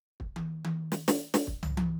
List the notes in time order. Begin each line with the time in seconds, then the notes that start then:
0.20 kick
0.36 high tom
0.65 high tom
0.92 snare
1.08 snare
1.34 snare
1.47 kick
1.63 floor tom
1.77 high tom